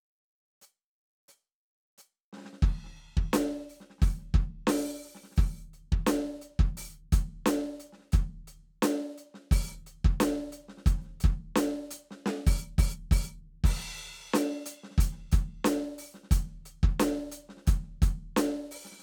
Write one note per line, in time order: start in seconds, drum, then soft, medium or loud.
0.62 hi-hat pedal medium
1.28 hi-hat pedal medium
1.98 hi-hat pedal medium
2.33 snare medium
2.37 snare soft
2.41 snare soft
2.45 snare medium
2.53 snare soft
2.62 kick loud
2.62 crash medium
2.84 snare soft
2.96 open hi-hat soft
3.17 kick loud
3.33 closed hi-hat loud
3.33 snare loud
3.56 snare soft
3.69 open hi-hat soft
3.80 snare soft
3.90 snare soft
3.98 open hi-hat medium
3.98 kick loud
3.98 snare soft
4.06 snare soft
4.12 snare soft
4.19 snare soft
4.34 kick loud
4.67 open hi-hat loud
4.67 snare loud
5.04 open hi-hat soft
5.15 snare soft
5.23 snare soft
5.31 snare soft
5.36 open hi-hat medium
5.36 kick loud
5.36 snare soft
5.43 snare soft
5.47 snare soft
5.51 snare soft
5.54 snare soft
5.73 closed hi-hat soft
5.92 kick loud
6.07 closed hi-hat loud
6.07 snare loud
6.41 closed hi-hat medium
6.59 kick loud
6.77 open hi-hat loud
7.12 closed hi-hat loud
7.12 kick loud
7.46 closed hi-hat loud
7.46 snare loud
7.80 closed hi-hat medium
7.87 closed hi-hat soft
7.92 snare soft
7.98 snare soft
8.01 snare soft
8.05 snare soft
8.11 closed hi-hat medium
8.11 kick loud
8.11 snare soft
8.47 closed hi-hat medium
8.82 closed hi-hat loud
8.82 snare loud
9.18 open hi-hat soft
9.34 snare soft
9.51 open hi-hat loud
9.51 kick loud
9.70 snare soft
9.86 closed hi-hat soft
10.04 kick loud
10.20 closed hi-hat loud
10.20 snare loud
10.52 closed hi-hat medium
10.60 closed hi-hat soft
10.68 snare soft
10.77 snare soft
10.86 closed hi-hat medium
10.86 kick loud
10.86 snare soft
10.97 snare soft
10.97 hi-hat pedal soft
11.03 snare soft
11.07 snare soft
11.12 snare soft
11.20 closed hi-hat medium
11.20 kick loud
11.56 closed hi-hat loud
11.56 snare loud
11.91 closed hi-hat loud
12.11 snare medium
12.26 snare loud
12.47 open hi-hat loud
12.47 kick loud
12.59 hi-hat pedal soft
12.78 open hi-hat loud
12.78 kick loud
12.92 hi-hat pedal medium
13.11 open hi-hat loud
13.11 kick loud
13.24 hi-hat pedal soft
13.64 open hi-hat loud
13.64 kick loud
13.64 crash loud
13.96 open hi-hat medium
14.34 open hi-hat loud
14.34 snare loud
14.66 closed hi-hat loud
14.72 closed hi-hat soft
14.83 snare soft
14.91 snare soft
14.98 closed hi-hat loud
14.98 kick loud
15.03 snare soft
15.12 snare soft
15.18 snare soft
15.32 closed hi-hat medium
15.32 kick loud
15.64 closed hi-hat loud
15.64 snare loud
15.98 open hi-hat medium
16.05 open hi-hat soft
16.14 snare soft
16.23 snare soft
16.31 closed hi-hat loud
16.31 kick loud
16.31 snare soft
16.41 snare soft
16.46 snare soft
16.50 snare soft
16.65 closed hi-hat medium
16.83 kick loud
17.00 closed hi-hat loud
17.00 snare loud
17.32 closed hi-hat medium
17.49 snare soft
17.57 snare soft
17.65 closed hi-hat loud
17.65 kick loud
17.65 snare soft
17.72 snare soft
17.78 snare soft
17.83 snare soft
17.87 snare soft
17.91 snare soft
18.02 closed hi-hat medium
18.02 kick loud
18.37 closed hi-hat loud
18.37 snare loud
18.71 open hi-hat loud
18.85 snare soft
18.92 snare soft
18.99 snare soft